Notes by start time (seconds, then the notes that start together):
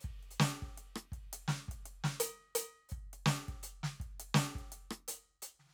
0.01 kick, hi-hat pedal
0.23 closed hi-hat
0.31 closed hi-hat
0.40 snare
0.62 kick
0.78 closed hi-hat
0.96 cross-stick
1.12 kick, closed hi-hat
1.33 closed hi-hat
1.48 snare
1.69 kick, closed hi-hat
1.86 closed hi-hat
2.04 snare
2.20 open hi-hat
2.55 open hi-hat
2.89 kick, hi-hat pedal
2.96 closed hi-hat
3.13 closed hi-hat
3.26 snare
3.49 kick, closed hi-hat
3.63 closed hi-hat
3.83 snare
4.00 kick, closed hi-hat
4.20 closed hi-hat
4.35 snare
4.55 kick, closed hi-hat
4.72 closed hi-hat
4.91 cross-stick
5.08 open hi-hat
5.42 open hi-hat
5.60 snare
5.64 snare
5.67 snare
5.69 snare